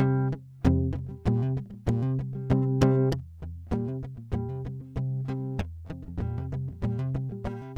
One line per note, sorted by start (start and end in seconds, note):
0.01 0.43 C3
0.01 0.33 G3
0.65 1.61 F2
0.65 1.19 C3
0.65 0.91 G3
0.94 1.04 G#3
1.08 1.18 G3
1.26 1.44 A#2
1.26 1.57 G3
1.44 1.66 C3
1.58 1.71 G3
1.72 1.82 G3
1.88 2.04 A#2
1.88 2.18 G3
2.04 2.19 C3
2.20 2.37 C3
2.20 2.34 G3
2.34 2.51 C3
2.34 2.48 G3
2.51 2.82 C3
2.51 2.82 G3
2.82 3.13 C3
2.82 3.13 G3
3.72 3.90 A#2
3.72 4.04 G3
3.90 4.01 C3
4.04 4.18 C3
4.19 4.33 A#2
4.33 4.45 A#2
4.33 4.66 G3
4.50 4.64 C3
4.66 4.96 C3
4.98 5.29 C3
5.29 5.61 C3
5.29 5.71 G3
5.91 6.04 C3
6.19 6.39 A#2
6.19 6.51 G3
6.39 6.53 C3
6.53 6.69 C3
6.53 6.72 G#3
6.69 6.80 A#2
6.83 7.00 A#2
6.83 7.05 G3
7.00 7.15 C3
7.16 7.30 C3
7.16 7.24 G3
7.30 7.44 A#2
7.30 7.44 G3
7.46 7.61 A#2
7.46 7.56 G3
7.63 7.75 C3